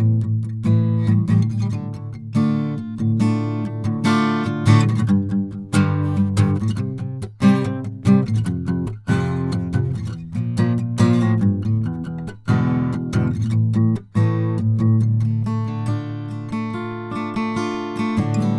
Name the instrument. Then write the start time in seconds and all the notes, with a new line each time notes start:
acoustic guitar
0.00 A2
0.23 A2
0.45 A2
0.66 A2 E3
1.10 A2 E3
1.30 A2 E3 G3
1.45 D3
1.53 G3
1.62 D3 G3
1.73 D3
2.37 D3 A3 D4 F4
2.97 A2 D3 F4
3.22 D3 A3 D4 F4
3.61 F4
3.67 D4
3.86 A2 D3 D4
4.06 D3 A3 D4 F4
4.46 D3 D4
4.66 A2 D3 A3 F4
4.70 D4
4.84 B3 E4
4.91 A2 D3
4.99 F#2 A#2 D3
5.11 G2
5.32 G2
5.53 G2
5.75 G2 D3 G3
6.19 G2 D3
6.39 G2 D3 F3
6.58 A2
6.70 B2
6.80 C3 G3
7.00 C3
7.42 C3 G3 C4
7.67 C3 G3
7.86 C3
8.07 C3 G3 C4
8.25 E2 A2
8.38 E2 A2
8.48 F2 C3
8.70 F2 C3
9.09 F2 C3 F3
9.54 F2 C3 F3
9.75 F2 C3 F3
9.96 E2 A2
10.08 E2 A2
10.21 E2
10.36 A#2 F3 A#3
10.60 A#2 F3 A#3
10.81 A#2 A#3
11.00 A#2 F3 A#3
11.24 A2
11.42 G2
11.65 E2 A2
11.86 E2
12.06 E2 B2
12.50 E2 B2 D3 G#3
12.95 E2 B2 D3
13.15 E2 B2 G#3
13.33 A2
13.39 D#3
13.46 A2
13.54 A2
13.76 A2 E3
14.17 A2 E3 A3
14.61 A2 D#3
14.81 A2 E3
15.03 A2
15.23 A3
15.48 A3 D4
15.70 D3
15.88 A3 D4 F4
16.31 A3
16.55 A3
16.76 F4
17.13 D4
17.18 A3
17.33 D4
17.38 A3
17.58 D4 F4
17.98 A3 D4
18.19 A2 D3 A3 D4 F4
18.37 G3 E4
18.43 D3 B3